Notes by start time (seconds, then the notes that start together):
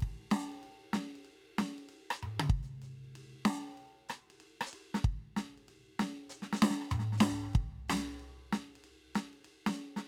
0.01 kick, ride
0.09 hi-hat pedal
0.31 snare, hi-hat pedal, ride
0.52 ride
0.63 ride
0.94 snare, hi-hat pedal, ride
1.16 ride
1.25 ride
1.59 snare, hi-hat pedal, ride
1.79 ride
1.89 ride
2.11 cross-stick, hi-hat pedal
2.23 mid tom
2.40 high tom
2.50 kick, crash
2.63 hi-hat pedal
2.82 hi-hat pedal, ride
3.05 ride
3.16 ride
3.46 snare, hi-hat pedal
3.78 ride
4.09 cross-stick, hi-hat pedal
4.31 ride
4.61 cross-stick
4.67 hi-hat pedal
4.73 ride
4.95 snare
5.05 kick, ride
5.37 snare, hi-hat pedal, ride
5.58 ride
5.69 ride
6.00 snare, hi-hat pedal, ride
6.30 hi-hat pedal, ride
6.43 snare
6.53 snare, hi-hat pedal
6.63 snare
6.71 snare
6.82 cross-stick
6.91 hi-hat pedal, mid tom
7.00 snare
7.13 snare
7.18 snare, hi-hat pedal
7.30 floor tom
7.44 floor tom
7.54 kick, ride
7.89 snare, hi-hat pedal, ride
8.10 ride
8.20 ride
8.53 snare, hi-hat pedal, ride
8.76 ride
8.84 ride
9.15 snare, hi-hat pedal, ride
9.33 ride
9.45 ride
9.67 snare
9.73 hi-hat pedal
9.79 ride
9.97 snare